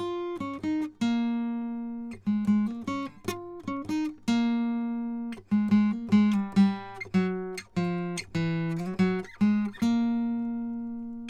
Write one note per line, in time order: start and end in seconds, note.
0.01 0.40 F4
0.42 0.60 C#4
0.64 0.90 D#4
1.02 2.17 A#3
2.27 2.48 G#3
2.49 2.67 G#3
2.67 2.86 A#3
2.88 3.11 C#4
3.29 3.64 F4
3.69 3.86 C#4
3.90 4.14 D#4
4.28 5.38 A#3
5.52 5.73 G#3
5.73 5.92 G#3
5.92 6.10 A#3
6.13 6.34 G#3
6.34 6.55 G3
6.57 7.02 G3
7.15 7.66 F#3
7.77 8.26 F3
8.35 8.80 E3
8.80 8.96 F#3
9.00 9.25 F#3
9.41 9.72 G#3
9.83 11.29 A#3